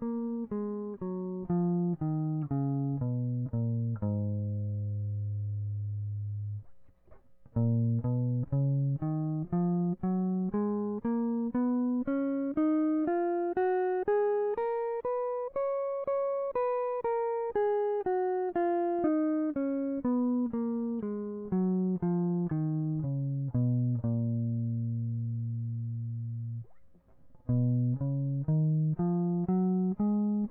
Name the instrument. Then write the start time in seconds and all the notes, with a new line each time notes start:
electric guitar
0.03 A#3
0.52 G#3
1.02 F#3
1.51 F3
2.02 D#3
2.52 C#3
3.03 B2
3.55 A#2
4.04 G#2
7.58 A#2
8.06 B2
8.54 C#3
9.03 D#3
9.54 F3
10.04 F#3
10.54 G#3
11.05 A#3
11.55 B3
12.08 C#4
12.58 D#4
13.08 F4
13.57 F#4
14.08 G#4
14.58 A#4
15.05 B4
15.56 C#5
16.08 C#5
16.56 B4
17.05 A#4
17.56 G#4
18.06 F#4
18.56 F4
19.04 D#4
19.57 C#4
20.05 B3
20.54 A#3
21.04 G#3
21.53 F#3
22.03 F3
22.52 D#3
23.06 C#3
23.56 B2
24.05 A#2
27.50 B2
28.02 C#3
28.49 D#3
29.00 F3
29.49 F#3
30.01 G#3